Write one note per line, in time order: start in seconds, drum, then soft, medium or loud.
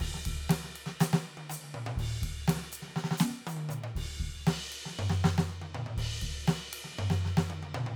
0.01 kick medium
0.01 crash medium
0.15 snare medium
0.26 kick medium
0.26 ride loud
0.51 snare loud
0.51 ride loud
0.65 snare soft
0.70 snare soft
0.77 ride medium
0.87 snare medium
1.01 kick soft
1.01 snare loud
1.01 hi-hat pedal loud
1.14 snare loud
1.26 high tom soft
1.38 high tom medium
1.51 hi-hat pedal loud
1.51 high tom medium
1.65 high tom soft
1.75 mid tom medium
1.88 mid tom loud
1.98 kick medium
1.98 crash medium
2.23 kick medium
2.23 ride medium
2.49 snare loud
2.49 ride loud
2.57 snare medium
2.63 snare soft
2.73 hi-hat pedal loud
2.73 ride medium
2.83 snare soft
2.89 snare soft
2.97 snare medium
3.05 snare medium
3.12 snare medium
3.18 snare loud
3.18 hi-hat pedal loud
3.48 hi-hat pedal medium
3.48 high tom loud
3.58 high tom medium
3.70 hi-hat pedal medium
3.70 mid tom medium
3.85 mid tom medium
3.97 kick medium
3.97 crash medium
4.21 kick medium
4.48 snare loud
4.48 ride loud
4.73 ride medium
4.87 snare medium
4.91 snare soft
5.00 floor tom loud
5.11 snare medium
5.25 snare loud
5.39 snare loud
5.51 high tom medium
5.63 high tom medium
5.76 mid tom loud
5.87 mid tom medium
5.98 kick medium
5.98 ride loud
6.23 kick medium
6.23 ride medium
6.46 kick soft
6.46 snare loud
6.46 ride medium
6.74 ride loud
6.85 snare soft
6.91 snare soft
6.95 snare soft
7.00 floor tom loud
7.11 snare loud
7.26 snare medium
7.38 snare loud
7.51 high tom loud
7.64 high tom medium
7.76 mid tom loud
7.88 mid tom medium